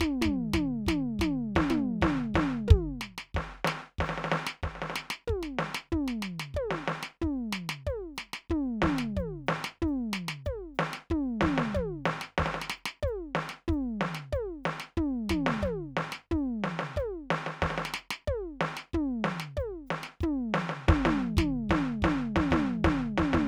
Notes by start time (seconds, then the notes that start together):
0.05 kick, snare, floor tom
0.21 snare, floor tom
0.25 kick
0.53 kick, snare, floor tom
0.86 kick, snare, floor tom
1.19 kick, snare, floor tom
1.55 kick, snare, floor tom
1.69 snare, floor tom
2.01 kick, snare, floor tom
2.34 kick, snare, floor tom
2.66 kick, mid tom
2.70 kick
3.01 snare
3.18 snare
3.34 kick, snare
3.64 snare
3.67 snare
3.98 kick, snare
4.05 hi-hat pedal
4.09 snare
4.18 snare
4.24 snare
4.32 snare
4.46 snare
4.63 kick, snare
4.75 snare
4.82 snare
4.90 snare
4.96 snare
5.10 snare
5.27 kick, mid tom
5.43 snare
5.59 snare
5.74 snare
5.91 kick, floor tom
6.08 snare
6.22 snare
6.39 snare
6.54 kick, high tom
6.71 snare
6.88 snare
7.03 snare
7.21 kick, floor tom
7.52 snare, hi-hat pedal
7.69 snare
7.86 kick, hi-hat pedal, high tom
8.15 snare, hi-hat pedal
8.33 snare
8.50 kick, floor tom
8.82 kick, snare, floor tom
8.98 snare
9.16 kick, hi-hat pedal, high tom
9.46 snare, hi-hat pedal
9.64 snare
9.81 kick, floor tom
9.87 hi-hat pedal
10.13 snare, hi-hat pedal
10.28 snare
10.45 kick, hi-hat pedal, high tom
10.74 hi-hat pedal
10.79 snare
10.93 snare
11.10 kick, floor tom
11.41 kick, snare, floor tom
11.58 snare
11.74 kick, hi-hat pedal, high tom
12.04 snare, hi-hat pedal
12.21 snare
12.38 kick, snare
12.44 snare, hi-hat pedal
12.54 snare
12.61 snare
12.70 snare
12.76 hi-hat pedal
12.85 snare
13.02 kick, high tom
13.07 hi-hat pedal
13.35 snare
13.49 snare
13.67 kick, floor tom
13.72 hi-hat pedal
14.01 snare
14.15 snare
14.32 kick, hi-hat pedal, high tom
14.63 snare, hi-hat pedal
14.80 snare
14.96 kick, floor tom
15.29 kick, snare, floor tom
15.46 snare
15.62 kick, hi-hat pedal, high tom
15.97 snare
16.12 snare
16.30 kick, floor tom
16.37 hi-hat pedal
16.64 snare
16.79 snare
16.96 kick, hi-hat pedal, high tom
17.30 snare
17.46 snare
17.62 kick, snare
17.70 snare
17.78 snare
17.85 snare
17.94 snare, hi-hat pedal
18.10 snare
18.27 kick, high tom
18.61 snare
18.77 snare
18.93 kick, floor tom
19.24 snare
19.40 snare
19.56 kick, hi-hat pedal, high tom
19.86 snare, hi-hat pedal
20.03 snare
20.20 kick, floor tom, hi-hat pedal
20.54 snare
20.69 snare
20.87 kick, snare, floor tom
21.05 kick, snare, floor tom
21.37 kick, snare, floor tom
21.69 kick, snare, floor tom
22.02 kick, snare, floor tom
22.35 kick, snare, floor tom
22.51 kick, snare, floor tom
22.83 kick, snare, floor tom
23.17 kick, snare, floor tom
23.33 kick, snare, floor tom